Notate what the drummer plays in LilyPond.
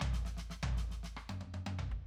\new DrumStaff \drummode { \time 4/4 \tempo 4 = 116 <ss tomfh>16 sn16 sn16 sn16 sn16 tomfh16 sn16 sn16 sn16 ss16 <tommh hh>16 tommh16 tommh16 tommh16 tomfh16 bd16 | }